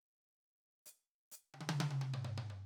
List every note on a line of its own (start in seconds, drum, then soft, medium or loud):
0.86 hi-hat pedal medium
1.31 hi-hat pedal medium
1.54 high tom medium
1.61 high tom medium
1.69 high tom loud
1.80 high tom loud
1.91 high tom medium
2.01 high tom medium
2.14 mid tom medium
2.24 mid tom medium
2.38 mid tom medium
2.50 mid tom medium